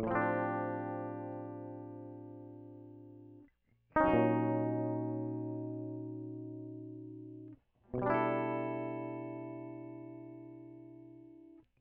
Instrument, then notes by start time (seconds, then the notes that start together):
electric guitar
0.01 A2
0.08 F3 C4
0.15 D4
3.96 D#4
4.01 F#3 C#4
4.15 A#2
7.95 B2
8.00 D3 G3
8.06 D4 E4